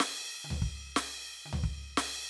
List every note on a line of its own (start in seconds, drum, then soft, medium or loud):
0.00 snare loud
0.00 crash loud
0.44 high tom soft
0.50 floor tom loud
0.62 kick medium
0.96 snare loud
0.96 crash loud
1.46 high tom soft
1.53 floor tom loud
1.64 kick medium
1.97 snare loud
1.97 crash loud
2.05 cross-stick soft